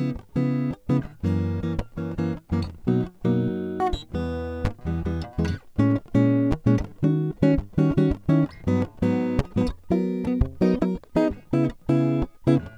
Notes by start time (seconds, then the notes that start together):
0.00 C#3 B3 E4
0.37 C#3 B3 E4
0.90 C#3 B3 E4
1.25 F#2 E3 A#3 C#4
1.65 F#2 E3 A#3 C#4
1.98 F#2 E3 A#3 C#4
2.19 F#2 E3 A#3 C#4
2.53 F#2 E3 A#3 C#4
2.88 B2 F#3 A#3 D#4
3.26 B2 F#3 A#3 D#4
3.81 D#4 F#4
3.94 D3
4.13 E2 E3 B3
4.86 E2 E3 B3
5.06 E2 E3 B3
5.39 E2 B3
5.79 A2 G#3 C#4 E4
6.16 A#2 G#3 C#4 E4
6.67 A#2 G#3 C#4 E4
6.80 G2
7.04 D#3 C#4 F#4
7.43 D#3 C#4 F#4
7.79 D#3 C#4 F#4
7.99 D#3 C#4 F#4
8.30 D#3 C#4 E4
8.68 G2 F#3 B3 D#4
9.04 G#2 F#3 B3 D#4
9.57 G#2 F#3 B3 D#4
9.92 F#3 B3
10.08 A#4
10.26 F#3 B3
10.62 F#3 B3 D#4 A#4
10.83 F#3 B3 E4 A#4
11.17 F#3 B3 D#4 G#4
11.54 C#3 B3 E4 G#4
11.90 C#3 B3 E4 G#4
12.48 C#3 B3 E4 G#4